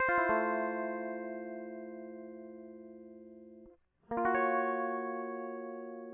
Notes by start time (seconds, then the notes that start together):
0.00 C5
0.09 F4
0.18 E4
0.30 A3
4.12 A#3
4.17 F4
4.25 F#4
4.35 C#5